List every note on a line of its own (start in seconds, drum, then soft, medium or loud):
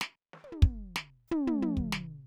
0.01 snare loud
0.33 snare soft
0.44 high tom soft
0.51 floor tom medium
0.62 kick loud
0.96 snare loud
1.27 floor tom loud
1.27 hi-hat pedal soft
1.47 floor tom loud
1.62 floor tom loud
1.77 kick medium
1.92 snare loud